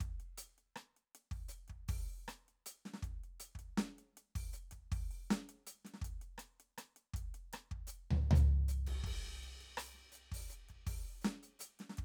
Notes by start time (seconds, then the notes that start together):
0.01 kick, closed hi-hat
0.20 closed hi-hat
0.38 closed hi-hat
0.58 closed hi-hat
0.76 cross-stick, closed hi-hat
0.97 closed hi-hat
1.15 closed hi-hat
1.32 kick, open hi-hat
1.49 hi-hat pedal
1.68 kick, closed hi-hat
1.89 open hi-hat, kick
2.28 cross-stick, closed hi-hat, hi-hat pedal
2.49 closed hi-hat
2.66 closed hi-hat
2.86 snare, closed hi-hat
2.94 snare
3.03 kick, closed hi-hat
3.24 closed hi-hat
3.40 closed hi-hat
3.55 kick, closed hi-hat
3.78 snare, closed hi-hat
3.99 closed hi-hat
4.17 closed hi-hat
4.36 kick, open hi-hat
4.53 hi-hat pedal, open hi-hat
4.72 kick, closed hi-hat
4.92 kick, open hi-hat
5.11 open hi-hat
5.31 snare, hi-hat pedal, open hi-hat
5.49 closed hi-hat
5.67 closed hi-hat
5.85 snare, closed hi-hat
5.94 snare
6.02 kick, closed hi-hat
6.22 closed hi-hat
6.38 cross-stick, closed hi-hat
6.60 closed hi-hat
6.78 cross-stick, closed hi-hat
6.97 closed hi-hat
7.14 kick, closed hi-hat
7.35 closed hi-hat
7.53 cross-stick, closed hi-hat
7.72 kick
7.88 hi-hat pedal
8.11 floor tom
8.31 floor tom
8.36 hi-hat pedal
8.69 hi-hat pedal
8.87 kick, ride
9.04 kick, crash
9.44 closed hi-hat
9.61 closed hi-hat
9.78 open hi-hat, cross-stick
9.94 snare, open hi-hat
10.12 closed hi-hat, hi-hat pedal
10.32 open hi-hat, kick
10.50 closed hi-hat, hi-hat pedal
10.69 kick, closed hi-hat
10.87 open hi-hat, kick
11.05 open hi-hat
11.22 snare, closed hi-hat, hi-hat pedal
11.43 closed hi-hat
11.60 closed hi-hat, hi-hat pedal
11.80 snare, closed hi-hat
11.90 snare
11.98 kick, closed hi-hat